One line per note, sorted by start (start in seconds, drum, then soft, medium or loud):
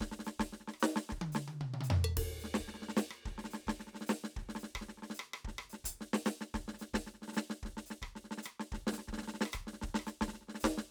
0.01 kick soft
0.01 snare medium
0.07 kick soft
0.12 snare soft
0.20 snare soft
0.25 snare medium
0.25 hi-hat pedal soft
0.40 kick soft
0.40 snare medium
0.53 snare soft
0.61 snare soft
0.67 snare soft
0.74 cross-stick soft
0.80 snare loud
0.80 hi-hat pedal medium
0.96 snare medium
1.10 kick soft
1.10 snare soft
1.19 kick soft
1.19 high tom loud
1.33 snare medium
1.33 hi-hat pedal medium
1.48 high tom medium
1.61 kick soft
1.61 mid tom medium
1.74 mid tom medium
1.81 hi-hat pedal medium
1.81 mid tom medium
1.91 floor tom loud
2.05 percussion loud
2.17 kick medium
2.17 ride loud
2.25 kick soft
2.31 kick soft
2.40 hi-hat pedal soft
2.44 snare soft
2.55 snare medium
2.60 kick soft
2.68 snare soft
2.75 snare soft
2.80 snare soft
2.82 snare soft
2.89 snare soft
2.97 snare loud
2.97 hi-hat pedal medium
3.11 cross-stick medium
3.26 kick soft
3.26 snare soft
3.33 kick soft
3.39 snare soft
3.45 snare soft
3.50 snare soft
3.50 hi-hat pedal soft
3.54 snare medium
3.67 kick soft
3.67 snare medium
3.80 snare soft
3.87 snare soft
3.94 snare soft
3.95 snare soft
4.01 snare soft
4.07 snare medium
4.07 hi-hat pedal medium
4.24 snare medium
4.37 kick soft
4.37 snare soft
4.43 kick soft
4.49 snare soft
4.56 snare soft
4.56 hi-hat pedal soft
4.64 snare soft
4.75 kick soft
4.75 cross-stick medium
4.82 snare soft
4.89 snare soft
4.98 snare soft
5.03 snare soft
5.10 snare soft
5.15 hi-hat pedal medium
5.20 cross-stick medium
5.34 cross-stick medium
5.45 kick soft
5.45 snare soft
5.51 kick soft
5.59 cross-stick medium
5.64 cross-stick soft
5.70 snare soft
5.70 hi-hat pedal medium
5.85 closed hi-hat loud
5.85 kick soft
6.01 snare soft
6.14 snare medium
6.26 snare medium
6.26 hi-hat pedal medium
6.41 snare soft
6.55 kick soft
6.55 snare medium
6.68 snare soft
6.74 snare soft
6.79 snare soft
6.79 hi-hat pedal medium
6.94 kick soft
6.94 snare medium
7.07 snare soft
7.14 snare soft
7.21 snare soft
7.28 snare soft
7.33 snare soft
7.33 hi-hat pedal medium
7.37 snare medium
7.50 snare medium
7.63 kick soft
7.63 snare soft
7.70 kick soft
7.77 snare soft
7.86 hi-hat pedal medium
7.91 snare soft
8.02 kick soft
8.02 cross-stick medium
8.16 snare soft
8.25 snare soft
8.31 snare soft
8.38 snare soft
8.43 cross-stick medium
8.43 hi-hat pedal medium
8.60 snare medium
8.72 kick soft
8.72 snare soft
8.79 kick soft
8.87 snare medium
8.93 snare soft
8.93 hi-hat pedal medium
8.99 snare soft
9.08 kick soft
9.08 snare soft
9.13 snare medium
9.18 snare medium
9.23 snare soft
9.28 snare soft
9.34 snare soft
9.41 snare medium
9.46 cross-stick medium
9.53 kick soft
9.53 cross-stick medium
9.53 hi-hat pedal medium
9.61 kick soft
9.67 snare soft
9.74 snare soft
9.82 kick soft
9.82 snare soft
9.90 kick soft
9.95 snare medium
10.00 cross-stick medium
10.07 snare soft
10.07 hi-hat pedal soft
10.22 kick soft
10.22 snare medium
10.29 snare soft
10.34 snare soft
10.42 snare soft
10.48 snare soft
10.55 snare soft
10.61 kick soft
10.61 snare loud
10.61 hi-hat pedal medium
10.70 kick soft
10.78 snare medium